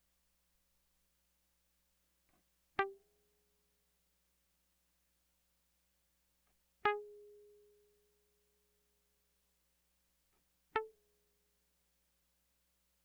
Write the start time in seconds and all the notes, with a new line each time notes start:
2.79 G4
6.85 G#4
10.76 A4